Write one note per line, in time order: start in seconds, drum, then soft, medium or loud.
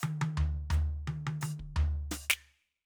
0.00 hi-hat pedal medium
0.00 high tom loud
0.04 closed hi-hat soft
0.21 high tom loud
0.37 floor tom loud
0.70 floor tom loud
0.70 hi-hat pedal soft
1.07 high tom loud
1.26 high tom loud
1.41 hi-hat pedal medium
1.41 high tom medium
1.59 kick soft
1.76 floor tom loud
2.11 snare medium
2.11 hi-hat pedal medium
2.30 snare loud